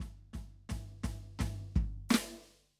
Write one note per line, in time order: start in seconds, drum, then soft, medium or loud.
0.00 kick soft
0.00 snare soft
0.00 floor tom soft
0.33 kick soft
0.33 snare soft
0.33 floor tom soft
0.69 kick soft
0.69 snare medium
0.69 floor tom medium
1.04 kick soft
1.04 snare medium
1.04 floor tom medium
1.39 kick medium
1.39 snare medium
1.39 floor tom medium
1.76 kick medium
1.76 floor tom medium
2.09 snare loud
2.09 hi-hat pedal loud
2.14 snare loud